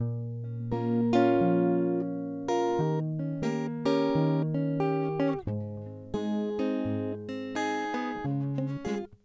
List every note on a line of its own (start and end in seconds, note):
0.02 3.40 A#2
0.02 0.63 A#3
0.46 0.74 C#4
0.73 2.70 A#3
0.73 1.07 C4
0.73 1.05 F4
0.73 2.03 A#4
1.14 3.03 C#4
1.14 2.07 F4
1.43 2.70 F3
2.49 2.81 F4
2.49 3.05 A#4
2.81 4.12 D#3
2.81 3.04 G4
3.21 3.72 C#4
3.44 5.44 A#3
3.44 3.72 G4
3.44 3.71 A#4
3.87 4.47 C#4
3.87 4.48 G4
3.87 4.48 A#4
4.17 5.42 D#3
4.56 5.12 C#4
4.81 5.46 G4
5.21 5.42 C#4
5.49 6.87 G#2
5.88 6.06 G#3
5.88 6.42 C4
6.15 8.20 G#3
6.15 6.54 D#4
6.15 7.20 G#4
6.60 7.18 C4
6.60 7.19 D#4
6.87 8.23 G#2
7.30 7.88 C4
7.56 8.30 D#4
7.56 8.39 G#4
7.95 8.22 B3
8.26 8.82 C#3
8.36 8.78 G#3
8.59 8.98 C#4
8.86 9.07 G#3
8.86 9.11 F4
8.86 9.09 G#4